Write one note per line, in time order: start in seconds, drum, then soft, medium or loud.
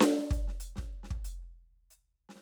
0.01 snare loud
0.18 snare soft
0.31 closed hi-hat soft
0.31 kick medium
0.48 snare soft
0.60 closed hi-hat medium
0.76 kick soft
0.76 snare soft
0.93 closed hi-hat soft
1.04 snare soft
1.11 kick medium
1.25 closed hi-hat medium
1.25 kick soft
1.42 snare soft
1.91 hi-hat pedal soft
2.29 snare soft
2.36 snare soft